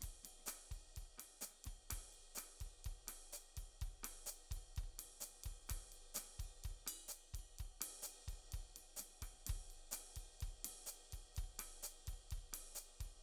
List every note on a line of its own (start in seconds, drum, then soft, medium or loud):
0.01 kick soft
0.01 snare soft
0.01 ride medium
0.09 kick soft
0.24 snare soft
0.24 ride soft
0.39 snare soft
0.47 cross-stick soft
0.47 hi-hat pedal medium
0.47 ride medium
0.72 kick soft
0.72 ride soft
0.76 kick soft
0.97 kick soft
0.97 ride soft
1.02 kick soft
1.18 cross-stick soft
1.18 ride medium
1.41 cross-stick soft
1.41 snare soft
1.41 hi-hat pedal medium
1.41 ride soft
1.65 kick soft
1.65 snare soft
1.65 ride soft
1.91 kick soft
1.91 cross-stick soft
1.91 ride medium
1.97 kick soft
2.13 ride soft
2.36 cross-stick soft
2.36 hi-hat pedal medium
2.36 ride medium
2.61 kick soft
2.61 ride soft
2.66 kick soft
2.85 kick soft
2.85 ride soft
2.92 kick soft
3.08 cross-stick soft
3.08 ride medium
3.33 hi-hat pedal medium
3.33 ride soft
3.57 kick soft
3.57 ride soft
3.63 kick soft
3.82 kick soft
3.82 ride soft
3.88 kick soft
4.04 cross-stick soft
4.04 snare soft
4.04 ride medium
4.27 hi-hat pedal medium
4.27 ride soft
4.51 kick soft
4.51 ride soft
4.57 kick soft
4.77 kick soft
4.77 ride soft
4.84 kick soft
4.99 cross-stick soft
4.99 ride medium
5.21 snare soft
5.21 hi-hat pedal medium
5.21 ride medium
5.44 kick soft
5.44 snare soft
5.44 ride soft
5.51 kick soft
5.68 kick soft
5.68 cross-stick soft
5.68 hi-hat pedal soft
5.68 ride medium
5.76 kick soft
5.93 ride soft
6.15 cross-stick soft
6.15 snare soft
6.15 hi-hat pedal medium
6.15 ride medium
6.40 kick soft
6.40 ride soft
6.45 kick soft
6.64 kick soft
6.64 ride soft
6.71 kick soft
6.87 cross-stick soft
6.87 snare soft
6.87 ride bell medium
7.09 hi-hat pedal medium
7.13 ride soft
7.34 kick soft
7.34 ride soft
7.39 kick soft
7.59 kick soft
7.59 ride soft
7.65 kick soft
7.81 cross-stick soft
7.81 snare soft
7.81 ride medium
8.03 hi-hat pedal medium
8.03 ride soft
8.28 kick soft
8.28 ride soft
8.33 kick soft
8.53 kick soft
8.53 ride soft
8.59 kick soft
8.76 snare soft
8.76 ride soft
8.97 snare soft
8.97 hi-hat pedal medium
8.97 ride medium
9.22 kick soft
9.22 cross-stick soft
9.22 snare soft
9.22 ride soft
9.34 snare soft
9.47 kick soft
9.47 snare soft
9.47 ride medium
9.55 kick soft
9.71 ride soft
9.92 cross-stick soft
9.92 snare soft
9.92 hi-hat pedal medium
9.92 ride medium
10.17 kick soft
10.17 ride soft
10.41 kick soft
10.41 ride soft
10.48 kick soft
10.64 snare soft
10.64 ride medium
10.87 hi-hat pedal medium
10.87 ride soft
11.13 kick soft
11.13 ride soft
11.35 kick soft
11.35 hi-hat pedal soft
11.35 ride soft
11.44 kick soft
11.59 cross-stick soft
11.59 ride medium
11.83 hi-hat pedal medium
11.83 ride soft
12.08 kick soft
12.08 ride soft
12.13 kick soft
12.31 kick soft
12.31 ride soft
12.38 kick soft
12.53 cross-stick soft
12.53 ride medium
12.75 hi-hat pedal medium
12.75 ride soft
13.01 kick soft
13.01 ride soft
13.06 kick soft